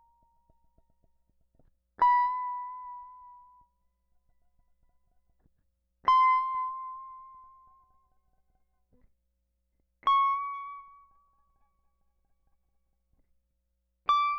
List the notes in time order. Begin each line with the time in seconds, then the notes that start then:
2.01 B5
6.08 C6
10.07 C#6
14.08 D6